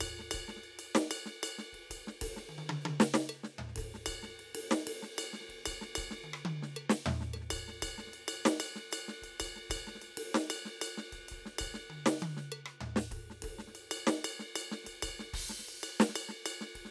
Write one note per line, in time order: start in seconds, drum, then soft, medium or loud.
0.01 kick soft
0.01 ride bell loud
0.19 snare soft
0.31 kick soft
0.31 ride bell loud
0.48 snare soft
0.57 snare soft
0.64 ride bell soft
0.79 ride bell medium
0.95 snare loud
1.11 ride bell loud
1.26 snare soft
1.43 hi-hat pedal medium
1.43 ride bell loud
1.59 snare soft
1.73 kick soft
1.73 ride medium
1.91 kick soft
1.91 ride bell medium
2.07 snare soft
2.22 kick soft
2.22 hi-hat pedal medium
2.22 ride loud
2.29 kick soft
2.37 snare soft
2.49 high tom medium
2.58 high tom medium
2.70 high tom medium
2.81 hi-hat pedal soft
2.86 high tom loud
3.00 snare loud
3.14 snare loud
3.14 hi-hat pedal soft
3.29 percussion medium
3.44 snare soft
3.59 floor tom medium
3.68 snare soft
3.76 kick soft
3.76 hi-hat pedal medium
3.76 ride loud
3.87 kick soft
3.88 kick soft
3.94 snare soft
4.06 kick soft
4.06 ride bell loud
4.23 snare soft
4.29 snare soft
4.40 ride medium
4.55 ride loud
4.71 snare loud
4.87 ride loud
5.03 snare soft
5.18 hi-hat pedal medium
5.18 ride bell loud
5.33 snare soft
5.41 snare soft
5.49 kick soft
5.49 ride medium
5.66 kick soft
5.66 ride bell loud
5.82 snare soft
5.96 kick soft
5.96 ride bell loud
6.04 kick soft
6.11 snare soft
6.24 high tom medium
6.34 cross-stick medium
6.45 high tom loud
6.63 snare soft
6.76 percussion medium
6.90 snare loud
7.00 hi-hat pedal soft
7.06 floor tom loud
7.21 snare soft
7.34 snare soft
7.34 percussion medium
7.41 snare soft
7.51 kick soft
7.51 ride bell loud
7.57 hi-hat pedal soft
7.62 kick soft
7.68 snare soft
7.83 kick soft
7.83 ride bell loud
7.88 kick soft
7.98 snare soft
8.07 snare soft
8.14 ride bell medium
8.28 ride bell loud
8.46 snare loud
8.46 hi-hat pedal medium
8.60 ride bell loud
8.76 snare soft
8.92 hi-hat pedal medium
8.92 ride bell loud
9.08 snare soft
9.22 kick soft
9.22 ride bell medium
9.40 kick soft
9.40 ride bell loud
9.46 kick soft
9.56 snare soft
9.70 kick soft
9.70 ride bell loud
9.77 kick soft
9.87 snare soft
9.95 snare soft
10.02 snare soft
10.02 ride bell medium
10.08 snare soft
10.17 ride loud
10.35 snare loud
10.50 ride bell loud
10.66 snare soft
10.82 hi-hat pedal loud
10.82 ride bell loud
10.98 snare soft
11.13 kick soft
11.13 snare soft
11.13 ride bell soft
11.29 kick soft
11.29 ride bell medium
11.39 kick soft
11.46 snare soft
11.59 kick soft
11.59 ride bell loud
11.67 kick soft
11.74 snare soft
11.90 high tom medium
12.06 snare loud
12.19 hi-hat pedal medium
12.19 high tom loud
12.37 snare soft
12.52 percussion medium
12.66 cross-stick medium
12.81 floor tom medium
12.96 snare loud
13.09 kick soft
13.09 hi-hat pedal soft
13.09 ride medium
13.17 kick soft
13.30 snare soft
13.42 kick soft
13.42 ride loud
13.52 kick soft
13.59 snare soft
13.68 snare soft
13.75 ride bell medium
13.91 ride bell loud
14.07 snare loud
14.25 ride bell loud
14.40 snare soft
14.56 hi-hat pedal medium
14.56 ride bell loud
14.72 snare medium
14.84 kick soft
14.84 snare soft
14.84 ride bell medium
15.03 kick soft
15.03 ride bell loud
15.09 kick soft
15.20 snare soft
15.34 kick soft
15.34 crash loud
15.41 kick soft
15.50 snare soft
15.59 snare soft
15.69 ride bell medium
15.83 ride bell loud
16.00 snare loud
16.09 snare soft
16.16 ride bell loud
16.29 snare soft
16.46 hi-hat pedal medium
16.46 ride bell loud
16.61 snare soft
16.75 kick soft
16.75 ride medium
16.85 snare soft